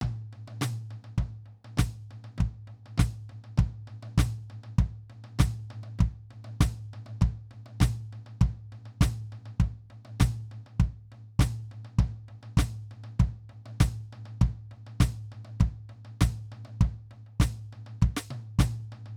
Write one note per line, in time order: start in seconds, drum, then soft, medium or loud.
0.01 kick medium
0.01 mid tom loud
0.33 mid tom medium
0.48 mid tom medium
0.61 snare loud
0.61 mid tom loud
0.91 mid tom medium
1.04 mid tom medium
1.18 kick loud
1.18 mid tom medium
1.46 mid tom soft
1.65 mid tom medium
1.78 kick loud
1.78 snare loud
1.78 mid tom loud
2.11 mid tom medium
2.24 mid tom medium
2.38 kick loud
2.38 mid tom medium
2.67 mid tom soft
2.86 mid tom medium
2.98 kick loud
2.98 snare loud
2.98 mid tom loud
3.29 mid tom medium
3.44 mid tom soft
3.58 kick loud
3.58 mid tom loud
3.87 mid tom medium
4.03 mid tom medium
4.18 kick loud
4.18 snare loud
4.18 mid tom loud
4.50 mid tom medium
4.63 mid tom medium
4.79 kick loud
4.79 mid tom medium
5.10 mid tom medium
5.24 mid tom medium
5.39 kick loud
5.39 snare loud
5.39 mid tom loud
5.70 mid tom medium
5.83 mid tom medium
5.99 kick loud
5.99 mid tom medium
6.31 mid tom medium
6.44 mid tom medium
6.61 kick loud
6.61 snare loud
6.61 mid tom loud
6.93 mid tom medium
7.06 mid tom medium
7.21 kick loud
7.21 mid tom medium
7.51 mid tom medium
7.66 mid tom medium
7.80 kick loud
7.80 snare loud
7.80 mid tom loud
8.13 mid tom medium
8.26 mid tom medium
8.41 kick loud
8.41 mid tom medium
8.72 mid tom medium
8.86 mid tom medium
9.01 kick loud
9.01 snare loud
9.01 mid tom loud
9.32 mid tom medium
9.46 mid tom medium
9.60 kick loud
9.60 mid tom medium
9.90 mid tom soft
10.05 mid tom medium
10.20 kick loud
10.20 snare loud
10.20 mid tom loud
10.51 mid tom medium
10.66 mid tom soft
10.80 kick loud
10.80 mid tom medium
11.12 mid tom medium
11.39 kick loud
11.39 snare loud
11.39 mid tom loud
11.71 mid tom medium
11.85 mid tom medium
11.99 kick loud
11.99 mid tom medium
12.28 mid tom soft
12.43 mid tom medium
12.57 kick loud
12.57 snare loud
12.57 mid tom loud
12.91 mid tom medium
13.04 mid tom medium
13.20 kick loud
13.20 mid tom medium
13.49 mid tom soft
13.66 mid tom medium
13.80 kick loud
13.80 snare loud
13.80 mid tom loud
14.13 mid tom medium
14.26 mid tom medium
14.41 kick loud
14.41 mid tom medium
14.71 mid tom soft
14.87 mid tom medium
15.00 kick loud
15.00 snare loud
15.00 mid tom loud
15.32 mid tom medium
15.45 mid tom medium
15.60 kick loud
15.60 mid tom medium
15.89 mid tom soft
16.05 mid tom medium
16.21 kick loud
16.21 snare loud
16.21 mid tom loud
16.52 mid tom medium
16.65 mid tom medium
16.81 kick loud
16.81 mid tom medium
17.11 mid tom soft
17.26 mid tom soft
17.40 kick loud
17.40 snare loud
17.40 mid tom loud
17.73 mid tom medium
17.86 mid tom medium
18.02 kick loud
18.02 mid tom medium
18.17 snare loud
18.30 mid tom medium
18.59 kick loud
18.59 snare loud
18.59 mid tom loud
18.92 mid tom medium
19.06 mid tom medium